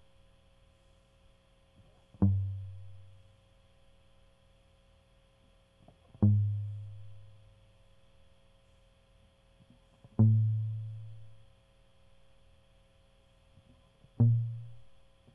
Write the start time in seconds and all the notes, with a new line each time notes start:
10.21 A2
14.22 A#2